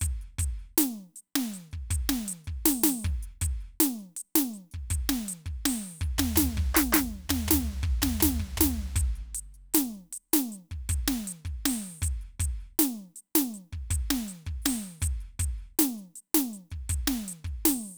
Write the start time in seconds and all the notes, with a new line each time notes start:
0.01 closed hi-hat, kick, hi-hat pedal
0.22 closed hi-hat
0.39 closed hi-hat, kick
0.60 closed hi-hat
0.78 closed hi-hat, snare
1.17 closed hi-hat
1.36 snare
1.54 closed hi-hat
1.72 kick, closed hi-hat
1.91 closed hi-hat, kick
2.10 snare, closed hi-hat
2.29 closed hi-hat
2.45 kick, closed hi-hat
2.66 open hi-hat, snare
2.84 open hi-hat, snare
3.03 kick, hi-hat pedal
3.23 closed hi-hat
3.42 closed hi-hat, kick
3.61 closed hi-hat
3.81 closed hi-hat, snare
4.00 closed hi-hat
4.17 closed hi-hat
4.36 snare, closed hi-hat
4.54 closed hi-hat
4.72 kick, closed hi-hat
4.91 closed hi-hat, kick
5.10 snare
5.29 closed hi-hat
5.47 kick, closed hi-hat
5.66 open hi-hat, snare
6.01 kick, hi-hat pedal
6.19 snare, floor tom
6.36 snare, floor tom, hi-hat pedal
6.58 kick
6.75 percussion, snare
6.93 percussion, snare
6.99 floor tom
7.30 snare, floor tom
7.49 snare, floor tom
7.84 kick
8.03 snare, floor tom
8.21 snare, floor tom
8.40 kick
8.58 snare, floor tom
8.96 closed hi-hat, kick
9.16 closed hi-hat
9.35 closed hi-hat
9.55 closed hi-hat
9.75 closed hi-hat, snare
9.94 closed hi-hat
10.13 closed hi-hat
10.34 snare, closed hi-hat
10.53 closed hi-hat
10.72 kick, closed hi-hat
10.90 closed hi-hat, kick
11.08 snare
11.28 closed hi-hat
11.46 kick, closed hi-hat
11.66 open hi-hat, snare
12.01 closed hi-hat, kick, hi-hat pedal
12.22 closed hi-hat
12.40 closed hi-hat, kick
12.61 closed hi-hat
12.80 closed hi-hat, snare
12.98 closed hi-hat
13.17 closed hi-hat
13.36 snare, closed hi-hat
13.55 closed hi-hat
13.73 kick, closed hi-hat
13.91 closed hi-hat, kick
14.11 snare
14.29 closed hi-hat
14.46 kick, closed hi-hat
14.63 open hi-hat, snare, hi-hat pedal
15.01 closed hi-hat, kick, hi-hat pedal
15.21 closed hi-hat
15.40 closed hi-hat, kick
15.59 closed hi-hat
15.80 closed hi-hat, snare
15.99 closed hi-hat
16.16 closed hi-hat
16.35 snare, closed hi-hat
16.54 closed hi-hat
16.71 kick, closed hi-hat
16.90 closed hi-hat, kick
17.08 snare
17.29 closed hi-hat
17.45 kick, closed hi-hat
17.66 open hi-hat, snare